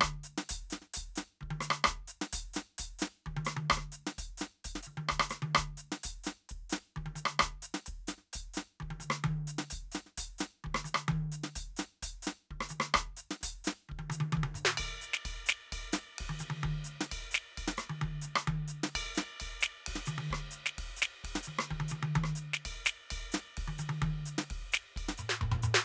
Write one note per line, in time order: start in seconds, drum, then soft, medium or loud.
0.01 kick soft
0.01 cross-stick loud
0.24 hi-hat pedal medium
0.38 snare medium
0.49 closed hi-hat loud
0.49 kick soft
0.70 snare medium
0.70 hi-hat pedal medium
0.82 snare soft
0.94 closed hi-hat loud
0.94 kick soft
1.16 snare medium
1.16 hi-hat pedal medium
1.41 kick soft
1.41 high tom soft
1.51 high tom medium
1.61 cross-stick medium
1.61 hi-hat pedal medium
1.70 cross-stick medium
1.84 kick soft
1.84 cross-stick loud
2.08 hi-hat pedal medium
2.22 snare medium
2.33 closed hi-hat loud
2.33 kick soft
2.54 snare medium
2.54 hi-hat pedal medium
2.78 closed hi-hat medium
2.78 kick soft
2.99 snare medium
2.99 hi-hat pedal medium
3.26 kick soft
3.26 high tom medium
3.37 high tom medium
3.45 cross-stick medium
3.45 hi-hat pedal medium
3.57 high tom medium
3.70 kick soft
3.70 cross-stick loud
3.77 cross-stick soft
3.92 hi-hat pedal medium
4.07 snare medium
4.18 closed hi-hat medium
4.18 kick soft
4.38 snare medium
4.38 hi-hat pedal medium
4.65 closed hi-hat medium
4.65 kick soft
4.75 snare medium
4.83 hi-hat pedal medium
4.87 high tom soft
4.97 high tom medium
5.09 kick soft
5.09 cross-stick medium
5.20 cross-stick loud
5.30 cross-stick medium
5.30 hi-hat pedal medium
5.42 high tom loud
5.55 kick soft
5.55 cross-stick loud
5.77 hi-hat pedal medium
5.92 snare medium
6.04 closed hi-hat medium
6.04 kick soft
6.24 snare medium
6.24 hi-hat pedal medium
6.49 kick soft
6.49 closed hi-hat medium
6.70 snare medium
6.70 hi-hat pedal medium
6.96 kick soft
6.96 high tom medium
7.06 high tom medium
7.16 hi-hat pedal medium
7.16 high tom medium
7.26 cross-stick medium
7.39 kick soft
7.39 cross-stick loud
7.62 hi-hat pedal medium
7.74 snare medium
7.86 kick soft
7.86 closed hi-hat medium
8.08 snare medium
8.08 hi-hat pedal medium
8.18 snare soft
8.33 closed hi-hat medium
8.33 kick soft
8.54 snare medium
8.54 hi-hat pedal medium
8.80 kick soft
8.80 high tom medium
8.91 high tom medium
9.00 hi-hat pedal medium
9.00 high tom medium
9.10 cross-stick medium
9.24 kick soft
9.24 high tom loud
9.31 kick soft
9.47 hi-hat pedal medium
9.59 snare medium
9.70 closed hi-hat medium
9.70 kick soft
9.92 snare medium
9.92 hi-hat pedal medium
10.06 snare soft
10.18 closed hi-hat loud
10.18 kick soft
10.39 snare medium
10.39 hi-hat pedal medium
10.64 kick soft
10.64 high tom medium
10.75 cross-stick medium
10.85 hi-hat pedal medium
10.85 high tom medium
10.95 cross-stick medium
11.08 kick soft
11.08 high tom loud
11.32 hi-hat pedal medium
11.44 snare medium
11.56 closed hi-hat medium
11.56 kick soft
11.77 snare medium
11.77 hi-hat pedal medium
12.03 closed hi-hat medium
12.03 kick soft
12.23 hi-hat pedal medium
12.27 snare medium
12.51 kick soft
12.51 high tom soft
12.61 cross-stick medium
12.69 hi-hat pedal medium
12.69 high tom medium
12.80 cross-stick medium
12.94 kick soft
12.94 cross-stick loud
13.17 hi-hat pedal medium
13.31 snare medium
13.41 closed hi-hat loud
13.41 kick soft
13.41 snare soft
13.64 snare medium
13.64 hi-hat pedal medium
13.89 kick soft
13.89 high tom soft
14.10 hi-hat pedal medium
14.10 high tom medium
14.20 high tom loud
14.32 high tom loud
14.37 kick soft
14.43 high tom loud
14.55 hi-hat pedal medium
14.55 mid tom medium
14.65 snare medium
14.78 kick soft
14.78 ride bell loud
14.98 hi-hat pedal medium
14.98 ride soft
15.14 snare medium
15.25 kick soft
15.25 ride bell medium
15.46 snare loud
15.46 hi-hat pedal medium
15.72 kick soft
15.72 ride bell medium
15.93 snare medium
15.93 hi-hat pedal medium
16.18 kick soft
16.18 ride loud
16.30 high tom medium
16.39 hi-hat pedal medium
16.39 high tom medium
16.50 high tom medium
16.63 kick soft
16.63 high tom loud
16.85 hi-hat pedal medium
17.01 snare medium
17.12 kick soft
17.12 ride bell loud
17.31 snare medium
17.31 hi-hat pedal medium
17.58 kick soft
17.58 ride bell medium
17.68 snare medium
17.78 cross-stick medium
17.78 hi-hat pedal medium
17.90 high tom medium
18.02 kick soft
18.02 high tom loud
18.22 hi-hat pedal medium
18.22 high tom soft
18.36 cross-stick medium
18.48 kick soft
18.48 high tom loud
18.68 hi-hat pedal medium
18.84 snare medium
18.95 kick soft
18.95 ride bell loud
19.15 snare medium
19.15 hi-hat pedal medium
19.40 kick soft
19.40 ride bell medium
19.47 kick soft
19.61 snare medium
19.61 hi-hat pedal medium
19.87 kick soft
19.87 ride loud
19.96 snare medium
20.06 hi-hat pedal medium
20.06 high tom medium
20.18 high tom medium
20.31 kick soft
20.31 cross-stick medium
20.31 high tom soft
20.51 hi-hat pedal medium
20.66 snare medium
20.78 kick soft
20.78 ride medium
20.97 hi-hat pedal medium
21.02 snare medium
21.24 kick soft
21.24 ride medium
21.35 snare medium
21.43 hi-hat pedal medium
21.48 high tom medium
21.59 cross-stick medium
21.71 kick soft
21.71 high tom medium
21.80 high tom medium
21.88 hi-hat pedal medium
21.88 high tom medium
22.03 high tom loud
22.16 kick soft
22.16 high tom loud
22.24 cross-stick soft
22.35 hi-hat pedal medium
22.54 snare medium
22.65 kick soft
22.65 ride bell medium
22.85 snare medium
22.85 hi-hat pedal medium
23.11 kick soft
23.11 ride bell medium
23.32 snare medium
23.32 hi-hat pedal medium
23.57 kick soft
23.57 ride medium
23.68 high tom medium
23.79 hi-hat pedal medium
23.79 high tom medium
23.89 high tom medium
24.02 kick soft
24.02 high tom loud
24.26 hi-hat pedal medium
24.38 snare medium
24.50 kick soft
24.50 ride medium
24.72 snare medium
24.72 hi-hat pedal medium
24.97 kick soft
24.97 ride bell medium
25.09 snare medium
25.18 hi-hat pedal medium
25.18 mid tom medium
25.30 snare medium
25.41 kick soft
25.41 mid tom loud
25.52 mid tom loud
25.63 hi-hat pedal medium
25.63 mid tom loud
25.75 snare loud